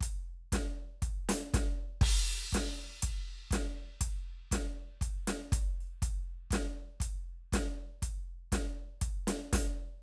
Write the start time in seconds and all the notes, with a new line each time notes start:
0.01 kick, open hi-hat
0.53 kick, snare, open hi-hat
1.02 kick, open hi-hat
1.29 snare, open hi-hat
1.54 kick, snare, open hi-hat
2.02 kick, crash
2.53 kick, snare, open hi-hat
3.03 kick, closed hi-hat
3.51 kick, snare, open hi-hat
4.01 kick, closed hi-hat
4.52 kick, snare, closed hi-hat
5.02 kick, open hi-hat
5.28 snare, open hi-hat
5.53 kick, cross-stick, open hi-hat
5.81 open hi-hat
6.03 kick, open hi-hat
6.51 kick, snare, open hi-hat
7.01 kick, open hi-hat
7.53 kick, snare, open hi-hat
8.03 kick, open hi-hat
8.52 kick, snare, open hi-hat
9.02 kick, open hi-hat
9.28 snare, open hi-hat
9.53 kick, snare, open hi-hat